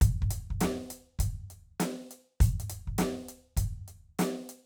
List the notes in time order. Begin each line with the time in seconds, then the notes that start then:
0.01 kick, closed hi-hat
0.22 kick
0.31 closed hi-hat
0.50 kick
0.61 snare, closed hi-hat
0.90 closed hi-hat
1.19 kick, closed hi-hat
1.50 closed hi-hat
1.80 snare, closed hi-hat
2.11 closed hi-hat
2.40 closed hi-hat, kick
2.60 closed hi-hat
2.70 closed hi-hat
2.87 kick
2.98 snare, closed hi-hat
3.29 closed hi-hat
3.57 kick, closed hi-hat
3.88 closed hi-hat
4.19 closed hi-hat, snare
4.49 closed hi-hat